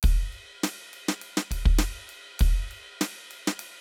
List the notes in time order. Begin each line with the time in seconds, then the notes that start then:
0.03 kick, ride
0.33 ride
0.63 snare, ride
0.93 ride
1.08 snare
1.22 ride
1.37 snare
1.51 kick, ride
1.66 kick
1.79 snare, ride
2.09 ride
2.39 kick, ride
2.71 ride
3.01 snare, ride
3.31 ride
3.47 snare
3.59 ride